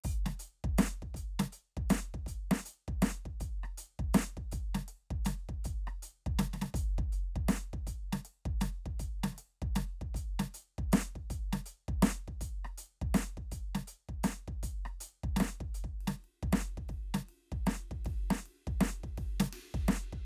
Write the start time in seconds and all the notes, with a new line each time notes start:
0.05 open hi-hat, kick
0.26 snare
0.40 closed hi-hat
0.64 kick
0.78 closed hi-hat, snare
1.03 kick
1.15 closed hi-hat, kick
1.40 snare
1.53 closed hi-hat
1.77 kick
1.90 closed hi-hat, snare
2.14 kick
2.27 closed hi-hat, kick
2.51 snare
2.66 closed hi-hat
2.88 kick
3.02 closed hi-hat, snare
3.26 kick
3.41 closed hi-hat, kick
3.64 cross-stick
3.78 closed hi-hat
4.00 kick
4.14 closed hi-hat, snare
4.37 kick
4.52 closed hi-hat, kick
4.75 snare
4.88 closed hi-hat
5.11 kick
5.25 closed hi-hat, snare
5.49 kick
5.65 closed hi-hat, kick
5.88 cross-stick
6.03 closed hi-hat
6.27 kick
6.39 snare
6.54 snare
6.62 snare
6.75 closed hi-hat, kick
6.99 kick
7.13 closed hi-hat
7.36 kick
7.49 closed hi-hat, snare
7.74 kick
7.87 closed hi-hat, kick
8.13 snare
8.25 closed hi-hat
8.46 kick
8.61 closed hi-hat, snare
8.86 kick
8.91 snare
9.00 closed hi-hat, kick
9.24 snare
9.33 snare
9.38 closed hi-hat
9.62 kick
9.76 snare, closed hi-hat
10.02 kick
10.15 closed hi-hat, kick
10.40 snare
10.55 closed hi-hat
10.79 kick
10.93 closed hi-hat, snare
11.16 kick
11.30 closed hi-hat, kick
11.53 snare
11.66 closed hi-hat
11.89 kick
12.03 closed hi-hat, snare
12.28 kick
12.41 closed hi-hat, kick
12.65 cross-stick
12.78 closed hi-hat
13.02 kick
13.15 closed hi-hat, snare
13.38 kick
13.52 closed hi-hat, kick
13.75 snare
13.88 closed hi-hat
14.09 kick
14.24 closed hi-hat, snare
14.48 kick
14.63 closed hi-hat, kick
14.86 cross-stick
15.01 closed hi-hat
15.24 kick
15.37 snare
15.40 snare
15.61 kick
15.75 closed hi-hat
15.84 kick
16.01 ride
16.08 snare
16.25 ride
16.43 kick
16.53 snare, ride
16.78 kick
16.89 kick, ride
17.15 snare
17.29 ride
17.52 kick
17.67 snare, ride
17.91 kick
18.05 kick, ride
18.31 snare
18.46 ride
18.67 kick
18.81 snare, ride
19.04 kick
19.18 kick, ride
19.40 snare
19.53 ride
19.75 kick
19.88 snare, ride bell
20.13 kick